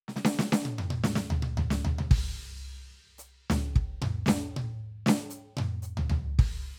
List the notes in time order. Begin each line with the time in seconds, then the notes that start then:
0.08 snare
0.16 snare
0.25 snare
0.39 snare
0.52 snare
0.65 high tom
0.78 mid tom
0.90 high tom
1.04 snare
1.15 snare
1.30 floor tom
1.42 high tom
1.57 floor tom
1.70 snare
1.85 floor tom
1.98 floor tom
2.11 kick, crash
3.18 hi-hat pedal
3.50 snare, floor tom
3.73 kick, hi-hat pedal
4.02 mid tom, high tom
4.26 snare
4.28 snare
4.56 high tom
5.06 snare
5.08 snare
5.30 hi-hat pedal
5.57 mid tom, high tom
5.82 hi-hat pedal
5.97 floor tom
6.10 floor tom
6.39 kick, crash
6.63 crash